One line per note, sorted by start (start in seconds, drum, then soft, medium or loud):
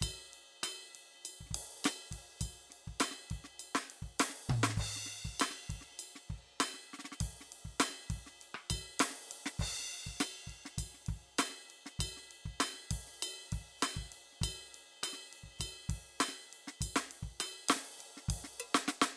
0.01 kick soft
0.01 hi-hat pedal soft
0.01 ride bell loud
0.09 kick soft
0.19 snare soft
0.24 snare soft
0.34 ride soft
0.64 cross-stick medium
0.64 hi-hat pedal medium
0.64 ride bell loud
0.96 ride medium
1.15 snare soft
1.24 hi-hat pedal soft
1.24 ride bell medium
1.41 kick soft
1.47 snare soft
1.52 kick soft
1.52 ride loud
1.84 snare loud
1.84 hi-hat pedal soft
1.84 ride bell loud
2.12 kick soft
2.12 snare soft
2.12 ride medium
2.40 kick soft
2.40 hi-hat pedal soft
2.40 ride bell medium
2.48 kick soft
2.71 snare soft
2.71 ride soft
2.88 kick soft
3.00 snare loud
3.00 hi-hat pedal soft
3.00 ride bell loud
3.12 snare soft
3.31 kick soft
3.31 ride soft
3.38 kick soft
3.45 snare soft
3.60 hi-hat pedal soft
3.60 ride bell medium
3.76 snare loud
3.91 ride medium
4.03 kick soft
4.20 snare loud
4.20 hi-hat pedal medium
4.20 ride loud
4.30 snare soft
4.50 kick soft
4.50 mid tom loud
4.64 snare loud
4.70 snare medium
4.77 kick medium
4.77 hi-hat pedal medium
4.77 crash loud
4.85 kick soft
4.97 snare soft
5.07 snare soft
5.26 kick soft
5.40 snare loud
5.40 hi-hat pedal medium
5.40 ride bell loud
5.51 snare soft
5.70 kick soft
5.70 ride medium
5.76 kick soft
5.82 snare soft
5.92 snare soft
6.00 hi-hat pedal soft
6.00 ride bell medium
6.16 snare soft
6.29 kick soft
6.29 ride soft
6.61 snare loud
6.61 hi-hat pedal medium
6.61 ride bell loud
6.75 snare soft
6.94 snare soft
7.00 snare medium
7.05 snare medium
7.13 snare soft
7.21 kick medium
7.21 snare soft
7.21 hi-hat pedal medium
7.21 ride medium
7.33 kick soft
7.41 snare soft
7.45 snare soft
7.53 ride medium
7.66 kick soft
7.81 snare loud
7.81 hi-hat pedal medium
7.81 ride bell loud
7.90 snare soft
8.11 kick soft
8.11 ride medium
8.18 kick soft
8.27 snare soft
8.41 hi-hat pedal soft
8.41 ride soft
8.55 cross-stick medium
8.71 kick soft
8.71 ride bell loud
8.78 kick soft
8.81 kick soft
9.00 snare loud
9.00 hi-hat pedal medium
9.00 ride loud
9.11 snare soft
9.32 ride medium
9.46 snare medium
9.59 kick medium
9.59 hi-hat pedal medium
9.59 crash loud
9.73 kick soft
9.80 snare soft
9.85 snare soft
9.88 snare soft
10.07 kick soft
10.21 snare loud
10.21 hi-hat pedal soft
10.21 ride bell loud
10.48 kick soft
10.48 ride soft
10.66 snare medium
10.79 kick soft
10.79 hi-hat pedal soft
10.79 ride bell medium
10.95 snare soft
11.02 snare soft
11.07 kick soft
11.07 ride soft
11.17 kick soft
11.38 snare loud
11.38 hi-hat pedal soft
11.38 ride bell loud
11.51 snare soft
11.71 ride soft
11.87 snare medium
12.00 kick soft
12.00 hi-hat pedal soft
12.00 ride bell loud
12.07 kick soft
12.18 snare soft
12.23 snare soft
12.27 snare soft
12.32 ride soft
12.46 kick soft
12.61 snare loud
12.61 hi-hat pedal medium
12.61 ride bell loud
12.74 snare soft
12.92 kick soft
12.92 ride loud
12.99 kick soft
13.08 snare soft
13.22 hi-hat pedal soft
13.22 ride bell loud
13.53 kick soft
13.53 ride medium
13.60 kick soft
13.62 kick soft
13.79 hi-hat pedal soft
13.83 snare medium
13.83 ride bell loud
13.95 kick soft
13.95 snare soft
14.03 kick soft
14.13 ride medium
14.33 snare soft
14.42 kick medium
14.42 hi-hat pedal soft
14.42 ride bell loud
14.50 kick soft
14.75 ride soft
15.04 cross-stick medium
15.04 hi-hat pedal soft
15.04 ride bell loud
15.14 snare soft
15.34 ride soft
15.44 kick soft
15.60 kick soft
15.60 snare soft
15.60 hi-hat pedal soft
15.60 ride bell loud
15.90 kick medium
15.90 ride medium
16.01 kick soft
16.19 snare loud
16.19 hi-hat pedal soft
16.19 ride bell loud
16.29 snare soft
16.54 ride soft
16.68 snare medium
16.81 kick soft
16.81 hi-hat pedal soft
16.81 ride bell loud
16.87 kick soft
16.96 snare loud
17.12 ride medium
17.23 kick soft
17.29 kick soft
17.41 cross-stick medium
17.41 hi-hat pedal soft
17.41 ride bell loud
17.69 snare loud
17.69 ride loud
17.77 snare soft
17.99 hi-hat pedal soft
17.99 ride soft
18.18 snare soft
18.29 kick medium
18.29 ride loud
18.37 kick soft
18.40 kick soft
18.45 snare soft
18.61 hi-hat pedal soft
18.61 percussion loud
18.75 snare loud
18.89 snare loud
19.02 snare loud